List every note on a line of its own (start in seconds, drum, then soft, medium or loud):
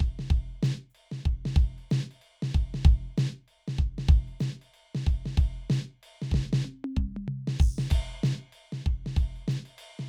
0.01 kick medium
0.01 ride bell soft
0.19 snare medium
0.31 kick medium
0.31 ride bell soft
0.63 snare loud
0.63 hi-hat pedal medium
0.90 hi-hat pedal soft
0.95 ride bell soft
1.12 snare medium
1.26 kick medium
1.46 snare medium
1.56 kick loud
1.56 ride bell soft
1.78 ride soft
1.91 snare loud
1.91 hi-hat pedal soft
2.11 ride bell soft
2.22 ride bell soft
2.43 snare medium
2.55 kick medium
2.55 ride soft
2.75 snare medium
2.85 kick loud
2.85 ride bell soft
3.18 snare loud
3.18 hi-hat pedal soft
3.48 ride bell soft
3.68 snare medium
3.79 kick medium
3.99 snare medium
4.09 kick loud
4.09 ride bell soft
4.28 ride bell soft
4.40 snare loud
4.40 hi-hat pedal medium
4.62 ride bell soft
4.74 ride bell soft
4.95 snare medium
5.07 kick medium
5.07 ride soft
5.26 snare medium
5.38 kick loud
5.38 ride bell soft
5.70 snare loud
5.70 hi-hat pedal soft
6.03 ride bell medium
6.22 snare medium
6.32 kick medium
6.32 snare loud
6.53 snare loud
6.65 high tom medium
6.85 high tom loud
6.97 kick medium
6.97 mid tom loud
7.17 mid tom medium
7.28 floor tom loud
7.48 snare loud
7.59 kick loud
7.59 crash medium
7.79 snare loud
7.91 kick medium
7.91 ride loud
8.24 snare loud
8.24 hi-hat pedal soft
8.53 ride bell soft
8.73 snare medium
8.86 kick medium
9.07 snare medium
9.17 kick medium
9.17 ride soft
9.36 ride bell soft
9.48 snare loud
9.48 hi-hat pedal soft
9.66 ride soft
9.79 ride medium
10.00 snare medium